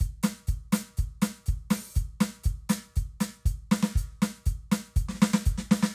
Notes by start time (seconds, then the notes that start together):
0.00 closed hi-hat, kick
0.23 closed hi-hat, snare
0.47 closed hi-hat, kick
0.73 open hi-hat, snare, hi-hat pedal
0.97 closed hi-hat, kick
1.22 closed hi-hat, snare
1.46 closed hi-hat, kick
1.71 open hi-hat, snare
1.95 closed hi-hat, kick, hi-hat pedal
2.21 closed hi-hat, snare
2.44 closed hi-hat, kick
2.70 closed hi-hat, snare
2.96 closed hi-hat, kick
3.21 closed hi-hat, snare
3.46 closed hi-hat, kick
3.72 snare
3.83 snare
3.96 closed hi-hat, kick
4.22 closed hi-hat, snare
4.46 closed hi-hat, kick
4.72 closed hi-hat, snare
4.96 closed hi-hat, kick
5.09 snare
5.15 snare
5.20 snare, hi-hat pedal
5.34 snare
5.46 closed hi-hat, kick
5.58 snare
5.71 snare
5.83 snare